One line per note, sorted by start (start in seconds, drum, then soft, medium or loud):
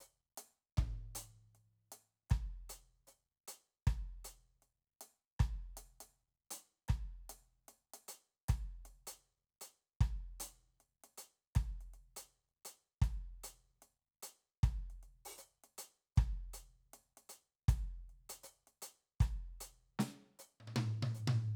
0.01 closed hi-hat soft
0.01 hi-hat pedal medium
0.38 closed hi-hat medium
0.78 kick medium
0.78 closed hi-hat soft
0.78 high tom medium
1.16 closed hi-hat loud
1.55 closed hi-hat soft
1.92 closed hi-hat medium
2.30 kick medium
2.30 cross-stick medium
2.30 closed hi-hat soft
2.70 closed hi-hat medium
3.08 closed hi-hat soft
3.08 hi-hat pedal soft
3.48 closed hi-hat medium
3.87 kick medium
3.87 cross-stick medium
3.87 closed hi-hat soft
4.25 closed hi-hat medium
4.63 closed hi-hat soft
5.01 closed hi-hat medium
5.40 kick medium
5.40 cross-stick medium
5.40 closed hi-hat soft
5.78 closed hi-hat medium
6.01 closed hi-hat medium
6.51 closed hi-hat medium
6.89 kick medium
6.89 cross-stick medium
6.89 closed hi-hat soft
7.30 closed hi-hat medium
7.69 closed hi-hat soft
7.94 closed hi-hat medium
8.09 closed hi-hat medium
8.49 kick medium
8.49 cross-stick medium
8.49 closed hi-hat medium
8.86 closed hi-hat soft
9.08 closed hi-hat medium
9.62 open hi-hat medium
10.01 kick medium
10.01 cross-stick medium
10.01 closed hi-hat soft
10.41 closed hi-hat loud
10.81 closed hi-hat soft
11.04 closed hi-hat soft
11.18 closed hi-hat medium
11.56 kick medium
11.56 cross-stick medium
11.56 closed hi-hat soft
11.81 closed hi-hat soft
11.94 closed hi-hat soft
12.17 closed hi-hat medium
12.49 closed hi-hat soft
12.66 open hi-hat medium
13.02 kick medium
13.02 cross-stick medium
13.02 closed hi-hat soft
13.44 closed hi-hat medium
13.83 closed hi-hat soft
14.23 closed hi-hat medium
14.64 kick medium
14.64 cross-stick medium
14.64 closed hi-hat soft
14.91 closed hi-hat soft
15.04 closed hi-hat soft
15.26 open hi-hat medium
15.39 hi-hat pedal medium
15.64 closed hi-hat soft
15.79 open hi-hat medium
16.17 kick medium
16.17 cross-stick medium
16.17 closed hi-hat soft
16.17 hi-hat pedal soft
16.54 closed hi-hat medium
16.94 closed hi-hat soft
17.18 closed hi-hat soft
17.30 closed hi-hat medium
17.69 kick medium
17.69 cross-stick medium
17.69 closed hi-hat medium
18.10 closed hi-hat soft
18.30 open hi-hat medium
18.44 hi-hat pedal medium
18.68 closed hi-hat soft
18.83 open hi-hat medium
19.20 kick medium
19.20 cross-stick medium
19.20 closed hi-hat soft
19.20 hi-hat pedal soft
19.61 closed hi-hat medium
20.00 snare medium
20.00 closed hi-hat medium
20.40 hi-hat pedal medium
20.61 high tom soft
20.68 high tom soft
20.77 high tom loud
21.03 high tom medium
21.15 hi-hat pedal soft
21.28 high tom loud